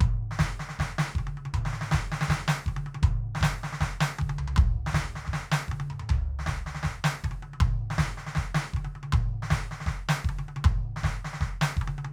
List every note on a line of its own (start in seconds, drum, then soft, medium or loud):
0.01 kick loud
0.01 mid tom loud
0.31 snare medium
0.39 kick medium
0.39 snare loud
0.60 snare medium
0.69 snare medium
0.79 kick medium
0.79 snare loud
0.99 snare loud
1.16 kick medium
1.16 high tom medium
1.27 high tom medium
1.38 high tom medium
1.46 high tom medium
1.54 kick medium
1.54 mid tom loud
1.66 snare medium
1.73 snare medium
1.82 snare medium
1.92 kick medium
1.92 snare loud
2.12 snare loud
2.21 snare loud
2.29 kick medium
2.29 snare loud
2.48 snare loud
2.67 kick medium
2.67 high tom loud
2.77 high tom loud
2.87 high tom medium
2.95 high tom loud
3.03 kick loud
3.03 mid tom loud
3.35 snare medium
3.41 kick medium
3.41 snare loud
3.64 snare medium
3.73 snare medium
3.81 kick medium
3.81 snare loud
4.01 snare loud
4.19 kick medium
4.19 high tom loud
4.30 high tom loud
4.39 floor tom loud
4.48 floor tom loud
4.57 kick loud
4.57 mid tom loud
4.87 snare medium
4.93 kick medium
4.93 snare loud
5.16 snare medium
5.25 kick medium
5.25 snare soft
5.34 snare loud
5.52 snare loud
5.69 kick medium
5.69 high tom loud
5.80 high tom loud
5.91 mid tom medium
6.00 mid tom medium
6.10 kick medium
6.10 floor tom loud
6.39 snare medium
6.47 kick medium
6.47 snare loud
6.67 snare medium
6.75 snare medium
6.83 kick medium
6.83 snare loud
7.05 snare loud
7.24 kick medium
7.24 high tom medium
7.31 high tom medium
7.43 high tom medium
7.54 high tom medium
7.61 kick loud
7.61 mid tom loud
7.91 snare medium
7.99 kick medium
7.99 snare loud
8.18 snare medium
8.27 snare medium
8.36 kick medium
8.36 snare loud
8.55 snare loud
8.74 kick medium
8.74 high tom medium
8.85 high tom medium
8.96 high tom medium
9.03 high tom medium
9.13 kick loud
9.13 mid tom loud
9.43 snare medium
9.51 kick medium
9.51 snare loud
9.72 snare medium
9.81 snare medium
9.87 kick medium
9.87 snare medium
10.09 snare loud
10.25 kick medium
10.29 high tom medium
10.39 high tom medium
10.49 high tom medium
10.57 high tom loud
10.65 kick loud
10.65 mid tom loud
10.97 snare medium
11.04 kick medium
11.04 snare loud
11.25 snare medium
11.34 snare medium
11.41 kick medium
11.41 snare medium
11.62 snare loud
11.77 kick medium
11.82 high tom medium
11.88 high tom loud
11.99 high tom medium
12.05 high tom loud